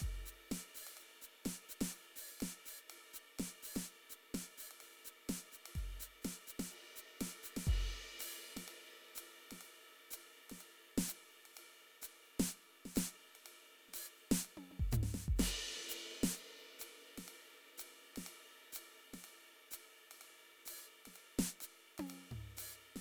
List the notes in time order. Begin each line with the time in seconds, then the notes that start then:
0.01 kick, hi-hat pedal, ride
0.26 hi-hat pedal
0.49 snare, hi-hat pedal, ride
0.75 hi-hat pedal
0.87 ride
0.97 hi-hat pedal, ride
1.22 hi-hat pedal
1.45 snare, hi-hat pedal, ride
1.69 hi-hat pedal
1.81 snare, ride
1.92 hi-hat pedal, ride
2.16 hi-hat pedal
2.41 snare, ride
2.66 hi-hat pedal
2.89 hi-hat pedal, ride
3.14 hi-hat pedal
3.37 snare, hi-hat pedal, ride
3.63 hi-hat pedal
3.76 snare, ride
3.86 hi-hat pedal
4.10 hi-hat pedal
4.33 snare, hi-hat pedal, ride
4.58 hi-hat pedal
4.71 ride
4.81 hi-hat pedal, ride
5.05 hi-hat pedal
5.29 snare, hi-hat pedal, ride
5.52 hi-hat pedal
5.66 ride
5.76 kick, hi-hat pedal, ride
6.00 hi-hat pedal
6.22 snare, hi-hat pedal, ride
6.47 hi-hat pedal
6.60 snare, ride
6.70 hi-hat pedal, ride
6.96 hi-hat pedal
7.19 snare, hi-hat pedal, ride
7.43 hi-hat pedal
7.57 snare, ride
7.67 kick, ride
8.20 hi-hat pedal, ride
8.57 snare, ride
8.68 ride
9.15 hi-hat pedal, ride
9.51 snare, ride
9.61 hi-hat pedal, ride
10.11 hi-hat pedal, ride
10.50 snare, ride
10.58 hi-hat pedal, ride
10.98 snare
11.08 hi-hat pedal, ride
11.29 hi-hat pedal
11.46 ride
11.53 hi-hat pedal, ride
12.02 hi-hat pedal, ride
12.24 hi-hat pedal
12.40 snare, ride
12.49 hi-hat pedal, ride
12.86 snare
12.95 snare, hi-hat pedal, ride
13.36 ride
13.44 hi-hat pedal, ride
13.89 snare
13.94 hi-hat pedal, ride
14.16 hi-hat pedal
14.32 snare
14.41 hi-hat pedal
14.45 ride
14.57 high tom
14.71 high tom
14.80 kick
14.92 floor tom, hi-hat pedal
15.03 snare
15.14 snare
15.28 kick
15.37 snare, hi-hat pedal, ride
15.77 snare
15.89 hi-hat pedal, ride
16.24 snare, ride
16.35 hi-hat pedal, ride
16.57 hi-hat pedal
16.79 hi-hat pedal, ride
17.18 snare, ride
17.23 hi-hat pedal
17.28 ride
17.78 hi-hat pedal, ride
18.16 snare, ride
18.27 ride
18.73 hi-hat pedal, ride
19.14 snare, hi-hat pedal, ride
19.24 ride
19.71 hi-hat pedal, ride
20.11 hi-hat pedal, ride
20.21 ride
20.66 hi-hat pedal, ride
21.06 snare, ride
21.13 hi-hat pedal, ride
21.39 snare
21.61 hi-hat pedal, ride
21.98 high tom, ride
22.06 hi-hat pedal
22.10 ride
22.32 floor tom
22.57 hi-hat pedal, ride
22.96 snare, ride